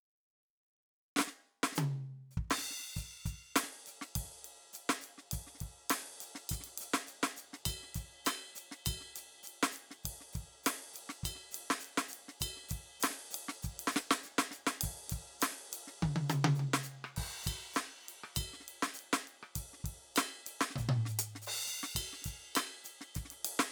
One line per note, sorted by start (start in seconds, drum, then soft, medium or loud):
1.16 snare loud
1.16 hi-hat pedal medium
1.18 snare loud
1.20 snare loud
1.27 snare soft
1.40 snare soft
1.42 snare soft
1.63 snare loud
1.72 snare soft
1.72 hi-hat pedal loud
1.78 high tom loud
2.31 hi-hat pedal soft
2.37 kick medium
2.44 kick soft
2.47 kick soft
2.47 snare loud
2.47 crash loud
2.58 snare soft
2.70 snare soft
2.79 snare soft
2.85 snare soft
2.96 open hi-hat medium
2.96 kick soft
3.05 kick soft
3.25 closed hi-hat medium
3.25 kick soft
3.32 kick soft
3.56 snare loud
3.56 ride loud
3.63 snare soft
3.86 hi-hat pedal medium
3.86 ride soft
4.01 snare medium
4.15 kick soft
4.15 hi-hat pedal soft
4.15 ride loud
4.22 kick soft
4.22 snare soft
4.25 kick soft
4.25 snare soft
4.29 snare soft
4.44 ride medium
4.73 hi-hat pedal medium
4.73 ride medium
4.89 snare loud
5.01 hi-hat pedal medium
5.01 ride soft
5.18 snare soft
5.31 kick soft
5.31 hi-hat pedal medium
5.31 ride medium
5.47 snare soft
5.54 snare soft
5.54 hi-hat pedal soft
5.60 kick soft
5.60 ride medium
5.89 snare loud
5.89 hi-hat pedal medium
5.89 ride loud
6.02 snare soft
6.20 hi-hat pedal medium
6.20 ride medium
6.35 snare medium
6.49 kick soft
6.49 snare soft
6.49 hi-hat pedal medium
6.49 ride bell medium
6.60 kick soft
6.60 snare soft
6.64 snare soft
6.64 ride medium
6.77 hi-hat pedal medium
6.77 ride medium
6.93 snare loud
7.07 hi-hat pedal medium
7.07 ride soft
7.23 snare loud
7.36 hi-hat pedal medium
7.36 ride soft
7.53 snare medium
7.65 kick soft
7.65 hi-hat pedal medium
7.65 ride bell loud
7.83 snare soft
7.88 snare soft
7.94 kick soft
7.94 hi-hat pedal medium
7.94 ride medium
8.25 snare loud
8.25 hi-hat pedal medium
8.25 ride bell loud
8.55 hi-hat pedal medium
8.55 ride soft
8.71 snare medium
8.85 kick soft
8.85 hi-hat pedal medium
8.85 ride bell loud
8.93 kick soft
8.96 kick soft
9.00 snare soft
9.15 hi-hat pedal medium
9.15 ride medium
9.43 hi-hat pedal medium
9.47 ride medium
9.63 snare loud
9.71 hi-hat pedal medium
9.76 ride soft
9.90 snare soft
10.03 kick soft
10.03 hi-hat pedal soft
10.03 ride loud
10.20 snare soft
10.33 kick soft
10.33 hi-hat pedal medium
10.33 ride soft
10.43 kick soft
10.63 snare loud
10.63 hi-hat pedal soft
10.63 ride loud
10.93 hi-hat pedal medium
10.93 ride medium
11.09 snare medium
11.23 kick soft
11.23 hi-hat pedal medium
11.23 ride bell loud
11.29 kick soft
11.35 snare soft
11.40 snare soft
11.51 hi-hat pedal medium
11.51 ride medium
11.70 snare loud
11.80 hi-hat pedal medium
11.84 ride soft
11.97 snare loud
12.08 hi-hat pedal medium
12.13 ride medium
12.28 snare soft
12.40 kick soft
12.40 hi-hat pedal medium
12.40 ride bell loud
12.56 snare soft
12.63 snare soft
12.68 kick soft
12.68 snare soft
12.68 hi-hat pedal medium
12.68 ride medium
13.00 snare loud
13.00 hi-hat pedal medium
13.00 ride loud
13.10 snare soft
13.30 hi-hat pedal medium
13.30 ride loud
13.48 snare medium
13.62 kick soft
13.62 hi-hat pedal medium
13.62 ride soft
13.73 kick soft
13.79 ride medium
13.87 snare medium
13.91 hi-hat pedal medium
13.96 snare loud
14.11 snare loud
14.23 snare soft
14.23 hi-hat pedal medium
14.38 snare loud
14.51 snare medium
14.51 hi-hat pedal medium
14.66 snare loud
14.81 kick soft
14.81 hi-hat pedal medium
14.81 ride loud
14.89 kick soft
14.92 kick soft
15.08 snare soft
15.08 hi-hat pedal medium
15.08 ride medium
15.12 kick soft
15.12 snare soft
15.18 kick soft
15.40 snare loud
15.40 hi-hat pedal medium
15.40 ride loud
15.51 snare soft
15.72 hi-hat pedal medium
15.72 ride medium
15.87 snare soft
16.00 kick soft
16.00 hi-hat pedal soft
16.00 high tom loud
16.11 kick soft
16.16 high tom medium
16.29 hi-hat pedal loud
16.29 high tom loud
16.44 high tom loud
16.55 hi-hat pedal soft
16.59 high tom medium
16.73 snare loud
16.83 hi-hat pedal medium
17.04 cross-stick medium
17.16 kick soft
17.16 crash medium
17.26 kick soft
17.43 kick soft
17.43 snare soft
17.43 hi-hat pedal medium
17.47 ride bell loud
17.53 kick soft
17.56 kick soft
17.73 snare loud
17.73 hi-hat pedal medium
17.73 ride soft
17.73 percussion soft
17.88 snare soft
18.03 hi-hat pedal soft
18.08 ride medium
18.23 cross-stick medium
18.35 kick soft
18.35 hi-hat pedal medium
18.35 ride bell loud
18.43 kick soft
18.46 kick soft
18.53 snare soft
18.60 snare soft
18.60 hi-hat pedal soft
18.68 ride medium
18.82 snare loud
18.87 snare soft
18.94 hi-hat pedal medium
18.99 ride soft
19.13 snare loud
19.22 hi-hat pedal soft
19.27 ride soft
19.43 cross-stick medium
19.55 kick soft
19.55 hi-hat pedal medium
19.55 ride medium
19.73 snare soft
19.79 snare soft
19.84 kick soft
19.84 ride medium
19.93 kick soft
20.15 snare loud
20.15 hi-hat pedal medium
20.15 ride bell loud
20.46 hi-hat pedal medium
20.46 ride medium
20.61 snare loud
20.70 snare soft
20.75 kick soft
20.75 hi-hat pedal medium
20.75 mid tom medium
20.82 snare soft
20.89 mid tom loud
21.05 snare soft
21.05 hi-hat pedal medium
21.19 closed hi-hat loud
21.35 snare soft
21.42 hi-hat pedal medium
21.47 crash loud
21.67 hi-hat pedal medium
21.83 snare medium
21.95 kick soft
21.95 hi-hat pedal medium
21.95 ride bell loud
22.13 snare soft
22.22 snare soft
22.22 hi-hat pedal medium
22.22 ride medium
22.26 kick soft
22.55 snare loud
22.55 hi-hat pedal medium
22.55 ride bell loud
22.84 hi-hat pedal medium
22.84 ride medium
23.01 snare soft
23.14 kick soft
23.14 snare soft
23.14 hi-hat pedal medium
23.14 ride medium
23.24 kick soft
23.24 snare soft
23.30 snare soft
23.30 ride medium
23.44 hi-hat pedal medium
23.44 ride loud
23.59 snare loud